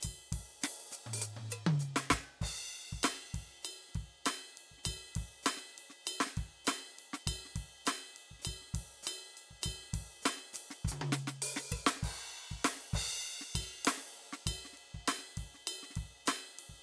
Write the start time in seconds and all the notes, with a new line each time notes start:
0.01 kick, hi-hat pedal, ride bell
0.11 kick
0.32 kick, ride
0.39 kick
0.61 snare, hi-hat pedal, ride
0.92 hi-hat pedal
1.06 mid tom
1.13 closed hi-hat
1.22 closed hi-hat, hi-hat pedal
1.33 mid tom, ride
1.50 hi-hat pedal, percussion
1.66 high tom
1.79 hi-hat pedal
1.96 snare
2.10 kick, snare, hi-hat pedal
2.41 kick, hi-hat pedal, crash
2.48 kick
2.92 kick
3.03 snare, hi-hat pedal, ride bell
3.34 kick, ride
3.40 kick
3.62 hi-hat pedal, ride bell
3.89 snare
3.95 kick, ride
4.02 kick
4.25 snare, hi-hat pedal, ride bell
4.57 ride
4.71 kick
4.78 snare
4.83 kick, hi-hat pedal, ride bell
5.15 kick, ride
5.22 kick
5.43 snare, hi-hat pedal, ride bell
5.57 snare
5.78 ride
5.90 snare
6.05 hi-hat pedal, ride bell
6.20 snare
6.26 snare
6.37 kick, ride
6.48 kick
6.64 snare, hi-hat pedal, ride bell
6.99 ride
7.13 snare
7.27 kick, hi-hat pedal, ride bell
7.34 kick
7.45 snare
7.55 kick, ride
7.62 kick
7.85 snare, hi-hat pedal, ride bell
8.16 ride
8.31 kick
8.39 snare, hi-hat pedal
8.45 kick, ride bell
8.61 snare
8.67 snare
8.71 kick, snare
8.75 ride
8.80 kick
9.03 cross-stick, hi-hat pedal
9.07 ride bell
9.37 ride bell
9.51 kick
9.62 hi-hat pedal, ride bell
9.66 kick
9.72 kick
9.83 snare
9.88 snare
9.93 kick, ride
10.00 kick
10.04 kick
10.22 snare, hi-hat pedal, ride bell
10.37 snare
10.53 hi-hat pedal, ride
10.70 snare
10.85 kick, hi-hat pedal
10.92 kick, high tom
10.98 kick, high tom
11.12 snare
11.27 snare
11.42 closed hi-hat
11.56 snare
11.71 kick, percussion
11.86 snare
11.96 snare
12.03 kick, crash
12.18 cross-stick
12.51 kick
12.64 snare, hi-hat pedal, ride
12.76 snare
12.93 kick, crash
13.08 kick
13.41 snare
13.55 kick, ride bell
13.62 kick
13.85 snare, hi-hat pedal, ride
13.97 snare
14.16 ride
14.33 snare
14.46 kick, hi-hat pedal, ride bell
14.56 kick
14.65 snare
14.73 snare
14.77 ride
14.94 kick
15.08 snare, hi-hat pedal, ride bell
15.18 snare
15.37 kick, ride
15.43 kick
15.54 snare
15.67 hi-hat pedal, ride bell
15.83 snare
15.90 snare
15.96 kick, ride
16.03 kick
16.26 snare, hi-hat pedal, ride bell
16.59 ride
16.69 kick
16.73 snare
16.78 snare